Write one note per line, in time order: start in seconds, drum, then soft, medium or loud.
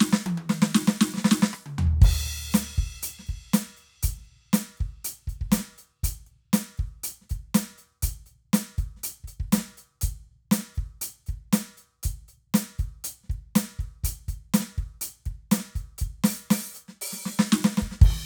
0.01 snare loud
0.13 snare loud
0.27 high tom loud
0.38 high tom medium
0.50 snare loud
0.62 snare loud
0.75 snare loud
0.88 snare loud
1.01 snare loud
1.14 snare medium
1.18 snare medium
1.25 snare loud
1.32 snare loud
1.43 snare loud
1.54 cross-stick medium
1.66 mid tom medium
1.79 floor tom loud
1.87 kick soft
2.02 kick loud
2.02 crash loud
2.52 closed hi-hat loud
2.52 snare loud
2.52 hi-hat pedal medium
2.78 kick medium
2.78 closed hi-hat soft
3.03 closed hi-hat loud
3.19 snare soft
3.27 closed hi-hat soft
3.27 kick soft
3.54 closed hi-hat loud
3.54 snare loud
3.77 closed hi-hat soft
4.03 closed hi-hat loud
4.03 kick medium
4.18 snare soft
4.25 closed hi-hat soft
4.54 closed hi-hat loud
4.54 snare loud
4.78 kick medium
4.78 closed hi-hat soft
5.05 closed hi-hat loud
5.28 closed hi-hat soft
5.28 kick soft
5.41 kick soft
5.51 closed hi-hat loud
5.51 kick soft
5.51 snare loud
5.57 snare medium
5.78 closed hi-hat soft
6.04 closed hi-hat loud
6.04 kick medium
6.27 closed hi-hat soft
6.54 closed hi-hat loud
6.54 snare loud
6.78 kick medium
6.78 closed hi-hat soft
7.04 closed hi-hat loud
7.22 snare soft
7.30 closed hi-hat soft
7.30 kick soft
7.55 closed hi-hat loud
7.55 snare loud
7.78 closed hi-hat soft
8.03 closed hi-hat loud
8.03 kick medium
8.26 closed hi-hat soft
8.54 closed hi-hat loud
8.54 snare loud
8.78 closed hi-hat soft
8.78 kick medium
8.97 snare soft
9.04 closed hi-hat loud
9.24 closed hi-hat soft
9.24 kick soft
9.40 kick soft
9.53 closed hi-hat loud
9.53 snare loud
9.58 snare medium
9.78 closed hi-hat soft
10.02 closed hi-hat loud
10.02 kick medium
10.24 closed hi-hat soft
10.52 closed hi-hat loud
10.52 snare loud
10.58 snare soft
10.75 closed hi-hat soft
10.75 kick soft
11.02 closed hi-hat loud
11.27 closed hi-hat soft
11.27 kick soft
11.53 closed hi-hat loud
11.53 snare loud
11.78 closed hi-hat soft
12.04 closed hi-hat loud
12.04 kick medium
12.29 closed hi-hat soft
12.55 closed hi-hat loud
12.55 snare loud
12.79 closed hi-hat soft
12.79 kick medium
12.88 kick soft
13.05 closed hi-hat loud
13.24 snare soft
13.30 kick soft
13.30 closed hi-hat soft
13.56 closed hi-hat loud
13.56 snare loud
13.79 kick soft
13.79 closed hi-hat soft
14.04 closed hi-hat loud
14.04 kick medium
14.29 closed hi-hat soft
14.29 kick soft
14.54 closed hi-hat loud
14.54 snare loud
14.60 snare medium
14.78 kick soft
14.78 closed hi-hat soft
15.02 closed hi-hat loud
15.26 kick soft
15.26 closed hi-hat soft
15.52 closed hi-hat loud
15.52 snare loud
15.58 snare medium
15.76 closed hi-hat soft
15.76 kick soft
15.99 open hi-hat medium
15.99 kick medium
16.24 open hi-hat loud
16.24 snare loud
16.51 open hi-hat loud
16.51 snare loud
16.74 closed hi-hat soft
16.74 hi-hat pedal medium
16.89 snare soft
17.02 open hi-hat loud
17.13 snare soft
17.26 snare medium
17.40 snare loud
17.48 hi-hat pedal medium
17.53 snare loud
17.65 snare loud
17.78 snare loud
17.82 kick soft
17.92 snare soft
18.02 kick loud
18.02 crash loud
18.11 high tom soft